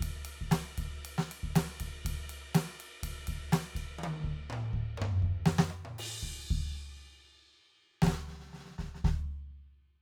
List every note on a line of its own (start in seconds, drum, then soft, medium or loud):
0.01 kick medium
0.01 ride loud
0.25 ride medium
0.42 kick medium
0.52 snare loud
0.52 ride loud
0.78 kick medium
0.78 ride medium
1.05 ride medium
1.19 snare medium
1.32 ride medium
1.44 kick medium
1.56 snare loud
1.56 ride loud
1.80 kick medium
1.80 ride medium
2.06 kick medium
2.06 ride loud
2.30 ride medium
2.55 snare loud
2.55 ride loud
2.81 ride medium
3.03 kick medium
3.03 ride loud
3.28 kick medium
3.28 ride medium
3.53 snare loud
3.53 ride loud
3.76 kick medium
3.76 ride bell medium
3.99 high tom medium
4.04 high tom loud
4.25 kick medium
4.50 mid tom loud
4.53 mid tom medium
4.74 kick medium
4.98 floor tom medium
5.02 floor tom loud
5.23 kick medium
5.46 snare loud
5.59 snare loud
5.70 high tom soft
5.85 mid tom medium
5.99 crash loud
6.23 kick medium
6.51 kick medium
6.51 snare soft
8.02 kick medium
8.02 snare loud
8.07 snare loud
8.12 snare medium
8.21 snare soft
8.26 snare soft
8.32 snare soft
8.36 snare soft
8.39 snare soft
8.44 snare soft
8.49 snare soft
8.54 snare soft
8.58 snare soft
8.63 snare soft
8.65 snare soft
8.71 snare soft
8.79 kick medium
8.79 snare soft
8.83 snare soft
8.89 snare soft
8.95 snare soft
9.01 snare soft
9.05 kick loud
9.05 snare medium